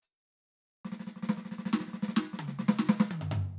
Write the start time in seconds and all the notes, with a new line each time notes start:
0.00 hi-hat pedal
0.85 snare
0.92 snare
1.00 snare
1.07 snare
1.16 snare
1.23 snare
1.29 snare
1.38 snare
1.46 snare
1.52 snare
1.59 snare
1.66 snare
1.74 snare
1.81 snare
1.88 snare
1.94 snare
2.03 snare
2.09 snare
2.17 snare
2.34 snare
2.40 high tom
2.49 snare
2.59 snare
2.69 snare
2.79 snare
2.89 snare
3.00 snare
3.11 high tom
3.22 floor tom
3.32 floor tom